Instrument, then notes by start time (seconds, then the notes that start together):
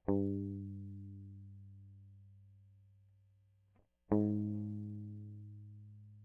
electric guitar
0.10 G2
4.13 G#2